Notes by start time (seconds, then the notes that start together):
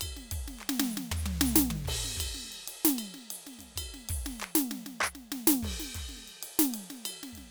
0.01 kick, hi-hat pedal, ride bell
0.17 snare
0.31 kick, ride
0.38 kick
0.48 snare
0.59 percussion
0.69 snare
0.80 snare
0.90 hi-hat pedal
0.97 snare
1.12 floor tom
1.17 hi-hat pedal
1.26 high tom
1.41 snare
1.46 hi-hat pedal
1.56 snare
1.65 snare
1.70 mid tom
1.75 snare
1.84 kick, hi-hat pedal
1.88 crash
2.04 snare
2.17 kick, ride bell
2.34 snare
2.44 snare
2.52 ride
2.68 ride
2.85 snare, hi-hat pedal
2.98 ride bell
3.14 snare
3.30 hi-hat pedal, ride
3.47 snare
3.58 kick, snare, ride
3.76 kick, hi-hat pedal, ride bell
3.94 snare
4.09 kick, hi-hat pedal, ride
4.26 snare
4.40 percussion
4.55 snare
4.71 snare
4.86 snare
5.00 kick, percussion, hi-hat pedal
5.15 snare
5.32 snare
5.47 snare
5.63 kick, crash
5.69 kick
5.80 snare
5.95 kick, snare, percussion, ride
6.09 snare
6.17 snare
6.24 snare
6.28 ride
6.43 ride
6.59 snare, hi-hat pedal
6.74 ride
6.90 snare
7.05 hi-hat pedal, ride bell
7.23 snare
7.33 kick, ride
7.38 snare